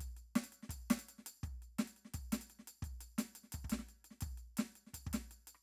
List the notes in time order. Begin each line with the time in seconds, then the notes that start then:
0.01 percussion
0.17 percussion
0.36 snare, percussion
0.44 percussion
0.53 percussion
0.63 snare
0.70 kick, percussion
0.91 snare, percussion
0.97 snare, percussion
1.09 percussion
1.19 snare
1.27 percussion
1.44 kick, percussion
1.62 percussion
1.79 snare, percussion
1.88 percussion
1.97 percussion
2.05 snare
2.14 kick, percussion
2.33 snare, percussion
2.42 percussion
2.50 percussion
2.59 snare
2.68 percussion
2.83 kick, percussion
3.01 percussion
3.19 snare, percussion
3.36 percussion
3.44 snare
3.53 kick, percussion
3.65 kick
3.70 snare, percussion
3.79 snare
3.89 percussion
4.05 percussion
4.11 snare
4.21 kick, percussion
4.38 percussion
4.57 snare, percussion
4.76 percussion
4.87 snare
4.94 kick, percussion
5.07 kick
5.13 snare, percussion
5.31 percussion
5.48 percussion
5.55 cross-stick